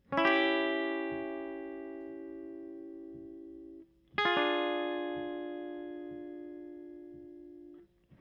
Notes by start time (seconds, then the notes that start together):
0.13 C#4
0.18 E4
0.25 G4
4.18 G#4
4.25 F4
4.37 D4